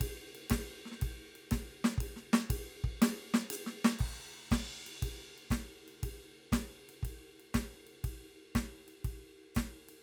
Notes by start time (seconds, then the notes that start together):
0.01 kick, ride
0.35 ride
0.50 kick, snare, hi-hat pedal, ride
0.86 snare
0.92 snare
1.00 kick, snare, ride
1.36 ride
1.51 kick, snare, hi-hat pedal, ride
1.85 snare
1.98 kick, ride
2.16 snare
2.34 snare
2.50 kick, ride
2.84 kick
3.02 snare, ride
3.34 snare
3.51 hi-hat pedal, ride
3.67 snare
3.85 snare
3.99 kick, crash
4.51 kick, snare, hi-hat pedal, ride
4.87 ride
5.03 kick, ride
5.38 ride
5.51 kick, snare, hi-hat pedal, ride
5.88 ride
6.03 kick, ride
6.52 kick, snare, hi-hat pedal, ride
6.89 ride
7.03 kick, ride
7.40 ride
7.54 kick, snare, hi-hat pedal, ride
7.87 ride
8.04 kick, ride
8.55 kick, snare, hi-hat pedal, ride
8.88 ride
9.05 kick, ride
9.55 kick, snare, hi-hat pedal, ride
9.89 ride